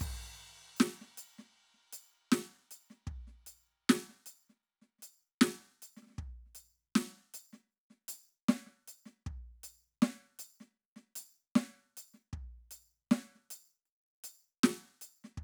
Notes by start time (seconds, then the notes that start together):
0.01 kick, crash, percussion
0.39 percussion
0.77 snare, percussion
1.01 snare
1.18 percussion
1.39 snare
1.74 snare
1.93 percussion
2.32 snare
2.71 percussion
2.91 snare
3.07 kick, percussion
3.28 snare
3.47 percussion
3.90 snare
4.09 snare
4.26 percussion
4.50 snare
4.64 percussion
4.82 snare
4.99 snare, percussion
5.42 snare
5.60 snare
5.83 percussion
5.97 snare
6.03 snare
6.07 snare
6.10 snare
6.14 snare
6.19 kick, snare
6.23 snare
6.28 snare
6.46 snare
6.55 percussion
6.96 snare
7.17 snare
7.34 percussion
7.53 snare
7.71 percussion
7.91 snare
8.09 percussion
8.49 snare
8.67 snare
8.88 percussion
9.06 snare
9.27 kick
9.64 percussion
10.03 snare
10.39 percussion
10.61 snare
10.96 snare
11.16 percussion
11.56 snare
11.97 percussion
12.14 snare
12.33 kick
12.71 percussion
13.12 snare
13.36 snare
13.51 percussion
13.86 percussion
14.24 percussion
14.64 snare
14.84 snare
15.02 percussion
15.25 snare
15.38 kick